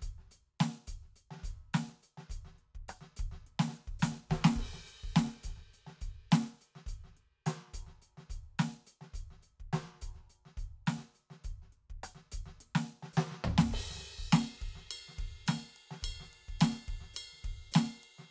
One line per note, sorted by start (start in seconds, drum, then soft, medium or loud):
0.01 closed hi-hat medium
0.01 kick soft
0.01 snare soft
0.08 kick soft
0.19 snare soft
0.23 snare soft
0.28 snare soft
0.31 closed hi-hat soft
0.31 snare soft
0.60 closed hi-hat medium
0.60 snare loud
0.74 snare soft
0.88 closed hi-hat medium
0.88 kick soft
1.03 snare soft
1.16 closed hi-hat soft
1.31 snare soft
1.37 snare soft
1.44 closed hi-hat medium
1.44 kick soft
1.50 kick soft
1.74 closed hi-hat medium
1.74 snare loud
1.88 snare soft
2.03 closed hi-hat soft
2.18 snare soft
2.30 closed hi-hat medium
2.30 kick soft
2.45 snare soft
2.53 snare soft
2.59 closed hi-hat soft
2.75 kick soft
2.89 open hi-hat medium
2.89 cross-stick medium
3.01 snare soft
3.17 closed hi-hat medium
3.17 kick medium
3.26 kick soft
3.32 snare soft
3.47 closed hi-hat soft
3.60 snare loud
3.68 snare soft
3.76 closed hi-hat soft
3.88 kick soft
4.00 closed hi-hat loud
4.00 snare loud
4.00 hi-hat pedal medium
4.12 snare soft
4.30 kick soft
4.30 snare loud
4.45 snare loud
4.50 hi-hat pedal medium
4.56 kick medium
4.56 crash medium
4.63 kick soft
4.74 snare soft
4.83 closed hi-hat soft
4.83 snare soft
5.04 kick soft
5.16 open hi-hat medium
5.16 snare loud
5.25 snare soft
5.44 closed hi-hat medium
5.44 kick soft
5.44 snare soft
5.57 snare soft
5.74 closed hi-hat soft
5.87 snare soft
6.02 closed hi-hat medium
6.02 kick soft
6.08 kick soft
6.31 open hi-hat medium
6.31 snare loud
6.31 hi-hat pedal soft
6.42 snare soft
6.62 closed hi-hat soft
6.76 snare soft
6.87 closed hi-hat medium
6.87 kick soft
7.05 snare soft
7.10 snare soft
7.14 snare soft
7.14 closed hi-hat soft
7.47 closed hi-hat medium
7.47 snare loud
7.74 closed hi-hat medium
7.74 kick soft
7.87 snare soft
8.02 closed hi-hat soft
8.18 snare soft
8.30 closed hi-hat medium
8.30 kick soft
8.59 closed hi-hat medium
8.59 snare loud
8.87 closed hi-hat soft
9.02 snare soft
9.14 closed hi-hat medium
9.14 kick soft
9.31 snare soft
9.40 closed hi-hat soft
9.40 snare soft
9.60 kick soft
9.73 closed hi-hat medium
9.73 snare loud
9.86 snare soft
10.02 closed hi-hat medium
10.02 kick soft
10.15 snare soft
10.30 closed hi-hat soft
10.46 snare soft
10.58 closed hi-hat soft
10.58 kick soft
10.63 kick soft
10.87 closed hi-hat soft
10.87 snare medium
10.99 snare soft
11.15 closed hi-hat soft
11.31 snare soft
11.44 closed hi-hat soft
11.44 kick soft
11.51 kick soft
11.63 snare soft
11.70 snare soft
11.70 closed hi-hat soft
11.90 kick soft
12.04 closed hi-hat medium
12.04 cross-stick medium
12.15 snare soft
12.32 closed hi-hat medium
12.32 kick soft
12.39 kick soft
12.46 snare soft
12.61 hi-hat pedal soft
12.61 open hi-hat medium
12.76 snare loud
13.03 snare soft
13.13 kick soft
13.13 hi-hat pedal medium
13.18 snare loud
13.32 snare soft
13.32 hi-hat pedal soft
13.45 kick soft
13.45 floor tom loud
13.58 snare loud
13.71 kick medium
13.71 crash loud
13.78 kick soft
13.90 snare soft
13.98 snare soft
14.19 kick soft
14.33 snare loud
14.33 hi-hat pedal medium
14.33 ride bell loud
14.62 kick soft
14.62 ride soft
14.68 kick soft
14.76 snare soft
14.91 hi-hat pedal soft
14.91 ride bell loud
15.09 snare soft
15.17 kick soft
15.17 snare soft
15.17 ride medium
15.25 kick soft
15.28 kick soft
15.47 snare loud
15.47 hi-hat pedal medium
15.47 ride bell loud
15.77 ride soft
15.91 snare medium
15.99 kick soft
15.99 hi-hat pedal soft
16.05 ride bell loud
16.09 kick soft
16.20 snare soft
16.34 ride soft
16.49 kick soft
16.60 snare loud
16.60 hi-hat pedal medium
16.60 ride bell loud
16.73 snare soft
16.88 kick soft
16.88 ride medium
16.95 kick soft
16.97 kick soft
16.97 snare soft
17.14 hi-hat pedal medium
17.14 ride bell loud
17.33 snare soft
17.39 snare soft
17.45 kick soft
17.45 ride medium
17.53 kick soft
17.72 snare loud
17.72 hi-hat pedal medium
17.72 ride bell loud
18.04 ride medium
18.19 snare soft